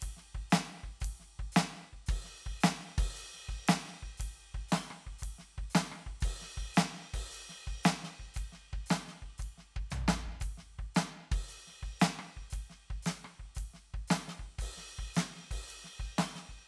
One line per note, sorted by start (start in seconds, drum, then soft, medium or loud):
0.01 kick medium
0.01 hi-hat pedal medium
0.01 ride medium
0.17 snare soft
0.35 kick medium
0.50 snare loud
0.50 hi-hat pedal soft
0.50 ride medium
0.69 snare soft
0.84 kick soft
1.01 kick medium
1.01 hi-hat pedal medium
1.05 ride medium
1.20 snare soft
1.40 kick medium
1.52 hi-hat pedal medium
1.57 snare loud
1.57 ride medium
1.75 snare soft
1.93 kick soft
2.07 kick medium
2.07 hi-hat pedal medium
2.07 crash medium
2.24 snare soft
2.47 kick medium
2.61 snare loud
2.61 hi-hat pedal medium
2.61 ride medium
2.80 snare soft
2.98 kick medium
2.98 crash medium
3.17 hi-hat pedal medium
3.17 ride soft
3.34 snare soft
3.49 kick medium
3.68 snare loud
3.68 hi-hat pedal medium
3.68 ride medium
3.87 snare soft
4.03 kick soft
4.18 kick medium
4.18 hi-hat pedal medium
4.18 ride medium
4.55 kick medium
4.69 snare loud
4.69 hi-hat pedal medium
4.69 ride medium
4.91 cross-stick medium
5.07 kick soft
5.19 kick medium
5.19 hi-hat pedal medium
5.24 ride medium
5.39 snare soft
5.58 kick medium
5.70 hi-hat pedal medium
5.75 snare loud
5.75 ride medium
5.92 cross-stick medium
6.07 kick soft
6.21 kick medium
6.21 hi-hat pedal medium
6.21 crash medium
6.42 snare soft
6.58 kick medium
6.74 snare loud
6.74 hi-hat pedal medium
6.74 ride medium
6.94 snare soft
7.14 kick medium
7.14 crash medium
7.32 hi-hat pedal medium
7.32 ride soft
7.50 snare soft
7.67 kick medium
7.84 snare loud
7.84 hi-hat pedal medium
7.84 ride medium
8.04 snare medium
8.20 kick soft
8.34 kick medium
8.34 hi-hat pedal medium
8.34 ride medium
8.53 snare soft
8.73 kick medium
8.86 hi-hat pedal medium
8.86 ride medium
8.91 snare loud
9.08 snare soft
9.22 kick soft
9.38 kick medium
9.38 hi-hat pedal medium
9.43 ride soft
9.58 snare soft
9.77 kick medium
9.91 floor tom loud
9.91 hi-hat pedal medium
10.08 snare loud
10.25 kick soft
10.41 kick medium
10.41 hi-hat pedal medium
10.41 ride medium
10.58 snare soft
10.79 kick medium
10.95 snare loud
10.95 hi-hat pedal medium
11.11 snare soft
11.32 kick medium
11.32 crash medium
11.49 hi-hat pedal medium
11.53 ride soft
11.67 snare soft
11.83 kick medium
12.00 snare loud
12.00 hi-hat pedal medium
12.00 ride medium
12.19 cross-stick medium
12.37 kick soft
12.51 kick medium
12.51 hi-hat pedal medium
12.51 ride medium
12.70 snare soft
12.91 kick medium
13.03 snare loud
13.03 hi-hat pedal medium
13.03 ride medium
13.25 cross-stick medium
13.40 kick soft
13.55 kick medium
13.55 hi-hat pedal medium
13.55 ride medium
13.74 snare soft
13.94 kick medium
14.08 snare loud
14.08 hi-hat pedal medium
14.12 ride medium
14.28 snare medium
14.40 kick soft
14.59 kick medium
14.59 hi-hat pedal medium
14.59 crash medium
14.78 snare soft
14.99 kick medium
15.14 snare loud
15.14 hi-hat pedal medium
15.14 ride medium
15.36 snare soft
15.51 kick medium
15.51 crash medium
15.68 hi-hat pedal medium
15.68 ride soft
15.85 snare soft
16.00 kick medium
16.19 snare loud
16.19 hi-hat pedal medium
16.19 ride medium
16.36 snare soft
16.49 kick soft